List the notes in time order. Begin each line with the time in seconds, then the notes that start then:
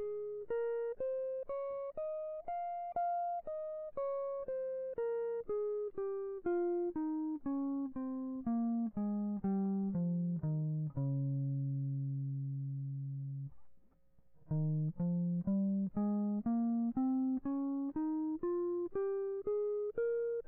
0.00 G#4
0.51 A#4
1.01 C5
1.50 C#5
1.98 D#5
2.49 F5
2.97 F5
3.48 D#5
3.98 C#5
4.49 C5
4.99 A#4
5.50 G#4
5.99 G4
6.47 F4
6.97 D#4
7.47 C#4
7.97 C4
8.48 A#3
8.98 G#3
9.46 G3
9.96 F3
10.46 D#3
10.99 C#3
14.53 D#3
15.01 F3
15.49 G3
15.98 G#3
16.47 A#3
16.98 C4
17.46 C#4
17.97 D#4
18.44 F4
18.96 G4
19.48 G#4
19.99 A#4